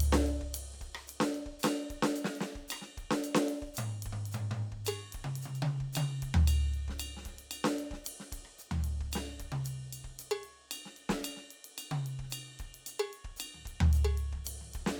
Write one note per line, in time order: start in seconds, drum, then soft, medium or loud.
0.01 hi-hat pedal medium
0.01 ride loud
0.13 snare loud
0.27 ride soft
0.41 kick soft
0.54 hi-hat pedal medium
0.54 ride loud
0.74 snare soft
0.81 kick soft
0.81 ride soft
0.95 cross-stick medium
1.08 hi-hat pedal medium
1.08 ride medium
1.21 snare loud
1.35 ride soft
1.46 kick soft
1.60 hi-hat pedal medium
1.60 ride bell loud
1.65 snare loud
1.91 kick soft
1.91 ride medium
2.03 snare loud
2.16 hi-hat pedal medium
2.16 ride bell medium
2.25 snare medium
2.36 ride soft
2.41 snare medium
2.56 kick soft
2.69 hi-hat pedal medium
2.69 ride bell loud
2.73 cross-stick medium
2.82 snare soft
2.98 kick soft
2.98 ride soft
3.11 snare medium
3.24 hi-hat pedal medium
3.24 ride bell medium
3.35 snare loud
3.49 ride medium
3.62 kick soft
3.75 hi-hat pedal medium
3.75 ride bell loud
3.79 mid tom loud
4.03 kick soft
4.03 ride medium
4.12 kick soft
4.12 mid tom loud
4.26 ride medium
4.32 hi-hat pedal medium
4.32 mid tom loud
4.52 mid tom loud
4.72 kick soft
4.85 hi-hat pedal medium
4.85 ride bell loud
4.85 percussion loud
5.13 kick soft
5.13 ride medium
5.21 kick soft
5.25 high tom loud
5.36 ride medium
5.42 hi-hat pedal medium
5.42 high tom medium
5.56 ride bell soft
5.63 high tom loud
5.81 kick soft
5.93 hi-hat pedal medium
5.93 ride bell loud
5.97 high tom loud
6.23 kick soft
6.23 ride medium
6.35 floor tom loud
6.48 hi-hat pedal medium
6.48 ride bell loud
6.74 ride soft
6.88 kick soft
6.88 snare soft
6.99 hi-hat pedal medium
6.99 ride bell loud
7.17 snare soft
7.22 kick soft
7.22 snare soft
7.22 ride medium
7.27 snare soft
7.31 snare soft
7.36 snare soft
7.36 ride medium
7.40 snare soft
7.52 hi-hat pedal medium
7.52 ride bell loud
7.65 snare loud
7.79 ride medium
7.91 kick soft
7.91 snare soft
8.05 hi-hat pedal medium
8.05 ride loud
8.20 snare soft
8.32 kick soft
8.32 ride medium
8.46 cross-stick soft
8.59 hi-hat pedal medium
8.72 floor tom loud
8.84 ride medium
9.01 kick soft
9.12 snare medium
9.12 hi-hat pedal medium
9.12 ride bell loud
9.40 kick soft
9.40 ride medium
9.52 high tom loud
9.65 hi-hat pedal medium
9.65 ride medium
9.93 ride bell medium
10.05 kick soft
10.19 hi-hat pedal medium
10.19 ride medium
10.32 percussion loud
10.44 ride soft
10.72 hi-hat pedal medium
10.72 ride bell loud
10.86 snare soft
10.97 ride soft
11.10 kick soft
11.10 snare loud
11.24 hi-hat pedal medium
11.24 ride bell loud
11.37 snare soft
11.51 ride medium
11.65 ride medium
11.78 hi-hat pedal medium
11.78 ride bell loud
11.92 high tom loud
12.07 ride medium
12.19 kick soft
12.24 snare soft
12.31 hi-hat pedal medium
12.31 ride bell loud
12.60 kick soft
12.60 ride soft
12.75 ride medium
12.87 hi-hat pedal medium
12.87 ride bell medium
13.00 percussion loud
13.14 ride medium
13.25 kick soft
13.37 hi-hat pedal medium
13.37 ride bell loud
13.55 floor tom soft
13.66 kick soft
13.66 ride medium
13.81 floor tom loud
13.94 hi-hat pedal medium
13.94 ride medium
14.05 percussion loud
14.18 ride medium
14.33 kick soft
14.33 floor tom soft
14.45 hi-hat pedal medium
14.45 ride loud
14.62 floor tom soft
14.74 kick soft
14.74 ride medium
14.81 kick soft
14.87 snare loud